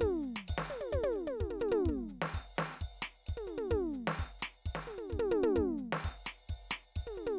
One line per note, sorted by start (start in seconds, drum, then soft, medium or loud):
0.01 kick soft
0.01 mid tom loud
0.12 mid tom soft
0.23 hi-hat pedal medium
0.37 snare medium
0.49 kick soft
0.49 ride loud
0.58 snare medium
0.68 hi-hat pedal medium
0.68 high tom medium
0.81 high tom medium
0.93 kick soft
0.93 high tom loud
1.04 high tom loud
1.12 hi-hat pedal medium
1.12 high tom soft
1.27 high tom medium
1.40 kick soft
1.40 mid tom medium
1.51 mid tom medium
1.60 hi-hat pedal medium
1.60 mid tom loud
1.69 mid tom loud
1.69 ride soft
1.86 kick soft
1.86 mid tom medium
1.92 kick soft
1.95 kick soft
2.09 hi-hat pedal medium
2.22 snare medium
2.35 kick soft
2.35 ride medium
2.56 snare medium
2.56 hi-hat pedal medium
2.82 kick soft
2.82 ride medium
3.02 snare loud
3.02 hi-hat pedal medium
3.27 kick soft
3.27 ride medium
3.37 mid tom medium
3.48 hi-hat pedal medium
3.58 mid tom medium
3.71 kick soft
3.71 mid tom loud
3.92 hi-hat pedal medium
3.92 mid tom soft
4.08 snare medium
4.20 kick soft
4.20 ride bell medium
4.39 snare loud
4.39 hi-hat pedal medium
4.66 kick soft
4.66 ride medium
4.74 kick soft
4.74 snare medium
4.85 hi-hat pedal medium
4.85 mid tom medium
4.98 mid tom medium
5.10 kick soft
5.10 mid tom medium
5.20 mid tom loud
5.32 hi-hat pedal medium
5.32 mid tom loud
5.44 mid tom loud
5.56 kick soft
5.56 mid tom loud
5.78 hi-hat pedal medium
5.93 snare medium
6.05 kick soft
6.05 ride bell medium
6.25 snare medium
6.25 hi-hat pedal medium
6.50 kick soft
6.50 ride bell medium
6.70 snare loud
6.70 hi-hat pedal medium
6.96 kick soft
6.96 ride medium
7.03 kick soft
7.07 mid tom medium
7.15 hi-hat pedal medium
7.15 mid tom medium
7.27 mid tom loud